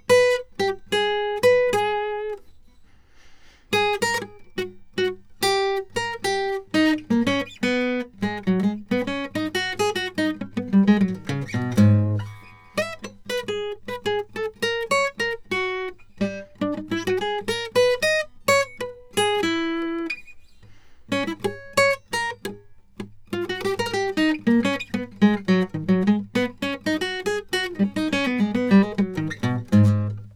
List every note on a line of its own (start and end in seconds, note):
0.11 0.47 B4
0.61 0.78 G4
0.94 1.42 G#4
1.44 1.79 B4
1.74 2.40 G#4
3.74 4.01 G#4
4.03 4.21 A#4
4.23 4.41 G#4
4.59 4.69 F#4
4.99 5.18 F#4
5.44 5.88 G4
5.97 6.22 A#4
6.26 6.62 G4
6.75 7.03 D#4
7.12 7.29 A#3
7.28 7.48 C#4
7.64 8.11 B3
8.24 8.43 G#3
8.48 8.61 F#3
8.61 8.77 G#3
8.93 9.06 B3
9.09 9.33 C#4
9.37 9.52 D#4
9.56 9.78 F#4
9.81 9.94 G#4
9.97 10.14 F#4
10.19 10.40 D#4
10.42 10.55 C#4
10.58 10.78 B3
10.74 10.86 G3
10.89 11.01 G#3
11.31 11.49 C#3
11.55 11.77 B2
11.79 12.19 G#2
12.79 12.99 E5
13.31 13.45 B4
13.50 13.79 G#4
13.90 14.03 B4
14.07 14.28 G#4
14.37 14.52 A4
14.64 14.89 A#4
14.92 15.15 C#5
15.21 15.41 A#4
15.53 15.96 F#4
16.63 16.75 D4
16.76 16.86 D#4
16.93 17.07 E4
17.08 17.21 F#4
17.23 17.45 G#4
17.49 17.72 A#4
17.77 17.99 B4
18.04 18.27 D#5
18.49 18.71 C#5
18.82 19.04 B4
19.18 19.46 G#4
19.44 20.13 E4
21.13 21.26 C#4
21.29 21.37 E4
21.79 22.00 C#5
22.14 22.37 A#4
23.34 23.48 F4
23.51 23.62 F#4
23.66 23.80 G4
23.80 24.00 A#4
23.95 24.18 G4
24.18 24.40 D#4
24.48 24.65 A#3
24.66 24.84 C#4
24.95 25.13 B3
25.23 25.42 G#3
25.49 25.71 F#3
25.75 25.89 D#3
25.90 26.05 F#3
26.09 26.22 G#3
26.36 26.53 B3
26.64 26.82 C#4
26.88 27.00 D#4
27.02 27.25 F#4
27.27 27.44 G#4
27.54 27.65 F#4
27.66 27.75 F4
27.75 27.88 D#4
27.97 28.13 D#4
28.14 28.25 C#4
28.26 28.46 B3
28.41 28.56 G#3
28.56 28.78 B3
28.72 28.81 G3
28.84 28.95 G#3
29.00 29.25 F#3
29.19 29.32 D#3
29.44 29.69 B2
29.74 30.13 G#2